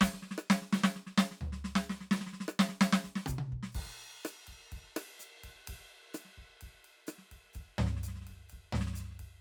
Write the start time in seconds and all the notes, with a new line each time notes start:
0.01 kick, snare, hi-hat pedal
0.07 snare
0.14 snare
0.22 snare
0.31 snare
0.38 cross-stick
0.50 snare
0.62 snare
0.73 snare
0.84 snare
0.96 snare
1.07 snare
1.18 snare
1.31 snare
1.41 floor tom
1.52 snare
1.64 snare
1.75 snare
1.90 snare
2.01 snare
2.11 snare
2.21 snare
2.27 snare
2.33 snare
2.40 snare
2.45 cross-stick, snare
2.59 snare
2.69 snare
2.80 snare, hi-hat pedal
2.93 snare
3.04 kick, snare, hi-hat pedal
3.16 snare
3.26 kick, hi-hat pedal, high tom
3.35 kick, high tom
3.52 kick
3.60 kick, snare
3.72 kick, hi-hat pedal, crash
3.81 kick
3.85 kick, snare
4.25 cross-stick, hi-hat pedal, ride
4.47 kick, ride
4.53 kick
4.72 kick, ride
4.77 kick
4.96 cross-stick, ride
5.19 hi-hat pedal
5.44 kick, ride
5.49 kick
5.66 kick, hi-hat pedal, ride
5.74 kick
5.92 ride
6.14 cross-stick, hi-hat pedal, ride
6.25 snare
6.38 kick
6.43 kick
6.60 kick, hi-hat pedal, ride
6.68 kick
6.85 ride
7.07 cross-stick, hi-hat pedal, ride
7.18 snare
7.31 kick, ride
7.45 snare
7.50 snare, hi-hat pedal
7.55 kick, ride
7.61 kick
7.78 snare, floor tom
7.86 snare
7.97 snare
8.03 hi-hat pedal, ride
8.08 snare
8.15 snare
8.22 snare
8.26 kick, snare, ride
8.30 snare
8.34 kick, snare
8.41 snare
8.44 snare
8.49 kick, snare, hi-hat pedal, ride
8.73 snare, floor tom
8.81 snare
8.87 snare
8.93 snare, hi-hat pedal
8.98 snare, ride bell
9.05 snare
9.11 snare
9.19 kick, ride
9.25 kick